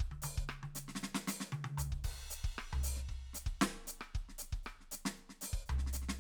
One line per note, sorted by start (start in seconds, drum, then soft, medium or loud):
0.01 kick soft
0.12 high tom medium
0.23 hi-hat pedal medium
0.23 high tom medium
0.38 kick medium
0.48 cross-stick medium
0.48 hi-hat pedal soft
0.64 high tom medium
0.76 snare soft
0.76 hi-hat pedal medium
0.89 snare soft
0.96 snare medium
1.02 snare medium
1.02 hi-hat pedal soft
1.15 snare medium
1.28 snare medium
1.28 hi-hat pedal medium
1.41 snare medium
1.52 hi-hat pedal soft
1.52 high tom medium
1.65 high tom medium
1.78 floor tom medium
1.78 hi-hat pedal medium
1.93 kick soft
2.05 kick soft
2.05 hi-hat pedal soft
2.05 crash medium
2.31 hi-hat pedal medium
2.45 kick medium
2.59 cross-stick medium
2.73 floor tom loud
2.84 snare soft
2.84 hi-hat pedal loud
2.97 snare soft
3.09 kick soft
3.09 snare soft
3.34 snare soft
3.34 hi-hat pedal loud
3.47 kick soft
3.47 snare soft
3.60 snare loud
3.60 hi-hat pedal soft
3.75 snare soft
3.87 snare soft
3.87 hi-hat pedal loud
4.02 cross-stick medium
4.15 kick soft
4.15 snare soft
4.29 snare soft
4.39 snare soft
4.39 hi-hat pedal loud
4.53 kick soft
4.53 snare soft
4.64 cross-stick medium
4.64 hi-hat pedal soft
4.81 snare soft
4.92 snare soft
4.92 hi-hat pedal loud
5.06 snare medium
5.16 snare soft
5.16 hi-hat pedal soft
5.30 snare soft
5.42 snare soft
5.42 hi-hat pedal medium
5.54 kick soft
5.67 floor tom loud
5.67 hi-hat pedal soft
5.79 snare soft
5.87 snare soft
5.94 snare soft
5.94 hi-hat pedal medium
6.03 snare soft
6.09 snare medium